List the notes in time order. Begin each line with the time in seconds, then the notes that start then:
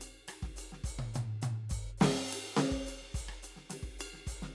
0.01 hi-hat pedal, ride bell
0.28 cross-stick, hi-hat pedal, ride
0.43 kick, snare
0.56 hi-hat pedal, ride bell
0.72 snare
0.84 kick, hi-hat pedal, ride bell
0.99 high tom
1.14 hi-hat pedal, high tom
1.42 hi-hat pedal, high tom
1.70 kick, hi-hat pedal
1.98 snare, hi-hat pedal, crash
2.28 hi-hat pedal
2.33 ride
2.56 snare, hi-hat pedal
2.72 kick, snare
2.87 hi-hat pedal, ride bell
3.01 snare
3.14 kick, hi-hat pedal, ride
3.28 cross-stick, ride
3.43 hi-hat pedal, ride bell
3.56 snare
3.70 snare, hi-hat pedal, ride
3.83 kick, ride
3.99 hi-hat pedal, ride bell
4.13 snare
4.27 kick, hi-hat pedal, ride
4.42 snare, ride